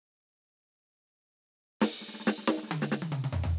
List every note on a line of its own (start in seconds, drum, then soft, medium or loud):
1.81 snare loud
1.81 ride loud
2.01 snare soft
2.08 snare soft
2.14 snare soft
2.20 snare soft
2.25 snare soft
2.27 snare loud
2.38 snare soft
2.42 snare soft
2.48 snare loud
2.57 snare soft
2.63 snare soft
2.68 snare soft
2.68 high tom loud
2.82 snare medium
2.92 snare loud
3.02 open hi-hat soft
3.02 high tom loud
3.12 mid tom loud
3.24 mid tom loud
3.33 floor tom loud
3.44 floor tom loud